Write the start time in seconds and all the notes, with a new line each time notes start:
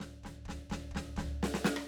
0.00 kick, snare, floor tom
0.24 kick, snare, floor tom
0.45 kick, snare, floor tom
0.70 kick, snare, floor tom
0.91 kick, floor tom
0.96 snare
1.17 kick, snare, floor tom
1.43 snare
1.54 snare
1.65 snare
1.76 cross-stick